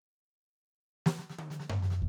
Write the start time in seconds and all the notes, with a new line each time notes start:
1.06 snare
1.19 snare
1.30 snare
1.39 high tom
1.50 snare, hi-hat pedal
1.60 snare
1.70 floor tom
1.82 snare
1.90 snare
2.02 kick